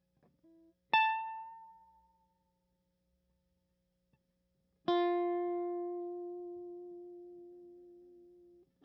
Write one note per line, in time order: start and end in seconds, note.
0.95 2.36 A5
4.89 7.26 F4